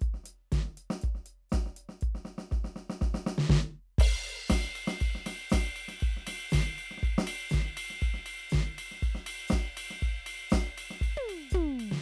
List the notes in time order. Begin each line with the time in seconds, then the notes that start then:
0.01 kick, closed hi-hat
0.14 snare
0.24 snare, closed hi-hat
0.52 kick, snare, closed hi-hat
0.65 snare
0.77 closed hi-hat
0.90 snare
1.02 kick, closed hi-hat
1.15 snare
1.26 open hi-hat
1.49 kick, snare, closed hi-hat, hi-hat pedal
1.66 snare
1.76 closed hi-hat
1.89 snare
2.01 kick, closed hi-hat
2.15 snare
2.25 snare
2.38 snare
2.51 kick, snare
2.64 snare
2.76 snare
2.90 snare
3.01 kick, snare
3.14 snare
3.27 snare
3.38 snare
3.49 kick, snare
3.98 kick, crash, ride
4.23 ride
4.48 kick, snare, hi-hat pedal, ride
4.64 snare
4.75 ride
4.87 snare, ride
5.00 kick, ride
5.15 snare
5.26 snare, ride
5.50 kick, snare, hi-hat pedal, ride
5.63 snare
5.76 ride
5.88 snare, ride
6.00 kick, ride
6.17 snare
6.27 snare, ride
6.50 kick, snare, hi-hat pedal, ride
6.67 snare
6.78 ride
6.91 snare
6.98 snare
7.03 kick, ride
7.18 snare
7.27 ride
7.50 snare, hi-hat pedal, ride
7.54 kick
7.65 snare
7.77 ride
7.90 snare
8.01 kick, ride
8.14 snare
8.26 ride
8.50 snare, hi-hat pedal, ride
8.54 kick
8.78 ride
8.92 snare
9.03 kick, ride
9.15 snare
9.26 ride
9.48 snare, hi-hat pedal, ride
9.53 kick
9.77 ride
9.91 snare, ride
10.02 kick
10.26 ride
10.50 kick, snare, hi-hat pedal, ride
10.78 ride
10.91 snare
11.01 kick, ride
11.17 high tom
11.29 ride
11.50 kick, floor tom, hi-hat pedal
11.79 ride
11.92 snare